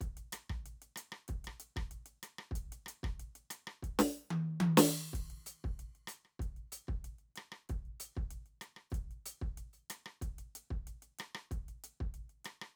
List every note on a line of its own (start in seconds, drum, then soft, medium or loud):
0.01 kick medium
0.01 closed hi-hat soft
0.17 closed hi-hat soft
0.33 cross-stick medium
0.33 closed hi-hat medium
0.50 kick medium
0.50 cross-stick soft
0.66 closed hi-hat soft
0.82 closed hi-hat soft
0.96 cross-stick medium
0.96 closed hi-hat medium
1.12 cross-stick medium
1.28 kick medium
1.28 closed hi-hat soft
1.45 cross-stick medium
1.45 closed hi-hat soft
1.60 closed hi-hat medium
1.76 kick medium
1.76 cross-stick medium
1.91 closed hi-hat soft
2.06 closed hi-hat soft
2.23 cross-stick medium
2.23 closed hi-hat medium
2.39 cross-stick medium
2.51 kick medium
2.56 closed hi-hat medium
2.72 closed hi-hat soft
2.86 cross-stick medium
2.86 closed hi-hat medium
3.04 kick medium
3.04 cross-stick medium
3.20 closed hi-hat soft
3.36 closed hi-hat soft
3.51 cross-stick medium
3.51 closed hi-hat medium
3.67 cross-stick medium
3.83 kick medium
3.83 closed hi-hat soft
3.99 snare loud
4.13 closed hi-hat soft
4.31 high tom medium
4.61 high tom loud
4.78 snare loud
4.78 crash medium
5.14 kick medium
5.14 closed hi-hat soft
5.30 closed hi-hat soft
5.47 closed hi-hat medium
5.64 kick medium
5.64 snare soft
5.80 closed hi-hat soft
5.95 closed hi-hat soft
6.08 closed hi-hat medium
6.08 cross-stick medium
6.25 cross-stick soft
6.40 kick medium
6.40 closed hi-hat soft
6.57 closed hi-hat soft
6.72 closed hi-hat medium
6.88 kick medium
6.88 cross-stick soft
7.05 closed hi-hat soft
7.19 closed hi-hat soft
7.36 cross-stick medium
7.36 closed hi-hat soft
7.52 cross-stick medium
7.69 kick medium
7.69 closed hi-hat soft
7.86 closed hi-hat soft
8.00 closed hi-hat medium
8.16 kick medium
8.16 cross-stick soft
8.31 closed hi-hat soft
8.46 closed hi-hat soft
8.62 cross-stick medium
8.62 closed hi-hat soft
8.77 cross-stick soft
8.90 kick medium
8.90 hi-hat pedal soft
8.95 closed hi-hat soft
9.11 closed hi-hat soft
9.26 closed hi-hat medium
9.42 kick medium
9.58 closed hi-hat soft
9.73 closed hi-hat soft
9.90 cross-stick medium
9.90 closed hi-hat medium
10.06 cross-stick medium
10.22 kick medium
10.22 closed hi-hat soft
10.39 closed hi-hat soft
10.56 closed hi-hat medium
10.71 kick medium
10.87 closed hi-hat soft
11.03 closed hi-hat soft
11.19 cross-stick medium
11.19 closed hi-hat soft
11.35 cross-stick medium
11.51 kick medium
11.51 closed hi-hat soft
11.69 closed hi-hat soft
11.84 closed hi-hat medium
12.01 kick medium
12.14 closed hi-hat soft
12.30 closed hi-hat soft
12.45 cross-stick medium
12.45 closed hi-hat soft
12.62 cross-stick medium